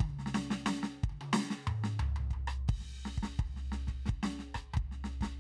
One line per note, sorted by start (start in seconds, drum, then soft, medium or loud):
0.01 kick medium
0.01 high tom loud
0.10 kick soft
0.20 snare soft
0.27 snare medium
0.35 snare loud
0.51 snare medium
0.67 snare loud
0.84 snare medium
1.04 kick soft
1.10 kick soft
1.10 high tom medium
1.22 high tom medium
1.34 snare loud
1.51 snare medium
1.68 mid tom loud
1.85 snare medium
2.00 floor tom loud
2.17 floor tom medium
2.31 kick soft
2.31 floor tom medium
2.48 cross-stick medium
2.69 kick medium
2.69 crash medium
2.81 kick soft
2.81 snare soft
3.04 snare soft
3.04 hi-hat pedal soft
3.18 kick soft
3.23 snare medium
3.40 kick soft
3.40 floor tom medium
3.57 snare soft
3.73 snare soft
3.73 hi-hat pedal soft
3.88 kick soft
3.88 snare soft
4.06 kick soft
4.06 snare soft
4.24 snare loud
4.40 snare soft
4.40 hi-hat pedal soft
4.55 kick soft
4.55 cross-stick medium
4.74 kick soft
4.74 floor tom medium
4.92 snare soft
5.05 snare soft
5.11 hi-hat pedal soft
5.21 kick soft
5.21 snare medium